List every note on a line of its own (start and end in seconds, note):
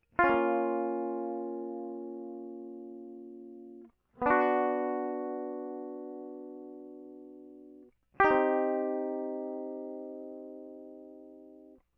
0.19 3.88 F4
0.24 3.85 C#4
0.30 3.92 A#3
4.22 7.92 B3
4.26 7.87 D4
4.31 7.91 F#4
8.20 11.79 G4
8.25 11.77 D#4
8.31 11.81 C4